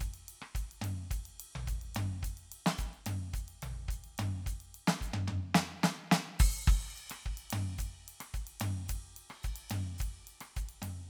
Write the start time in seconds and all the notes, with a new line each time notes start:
0.01 kick, hi-hat pedal, ride
0.15 ride
0.29 ride
0.43 cross-stick
0.56 kick, hi-hat pedal, ride
0.72 ride
0.82 high tom, ride
1.11 kick, hi-hat pedal, ride
1.26 ride
1.41 ride
1.56 floor tom
1.68 kick, hi-hat pedal, ride
1.82 ride
1.96 high tom, ride
2.23 kick, hi-hat pedal, ride
2.38 ride
2.53 ride
2.67 snare
2.79 kick, hi-hat pedal, ride
2.94 ride
3.07 high tom, ride
3.34 kick, hi-hat pedal, ride
3.49 ride
3.63 floor tom, ride
3.89 kick, hi-hat pedal, ride
4.05 ride
4.19 high tom, ride
4.47 kick, hi-hat pedal, ride
4.61 ride
4.75 ride
4.88 snare
5.02 kick, hi-hat pedal
5.14 high tom
5.28 high tom
5.55 snare
5.84 snare
6.12 snare
6.40 open hi-hat, kick
6.68 kick, ride
6.98 ride
7.11 cross-stick, ride
7.24 kick, hi-hat pedal
7.38 ride
7.51 high tom, ride
7.79 kick, hi-hat pedal, ride
8.09 ride
8.21 cross-stick, ride
8.35 kick, hi-hat pedal
8.48 ride
8.61 high tom, ride
8.89 kick, hi-hat pedal, ride
9.17 ride
9.30 cross-stick, ride
9.44 kick, hi-hat pedal
9.57 ride
9.71 high tom, ride
9.99 kick, hi-hat pedal, ride
10.28 ride
10.41 cross-stick, ride
10.57 kick, hi-hat pedal
10.70 ride
10.83 high tom, ride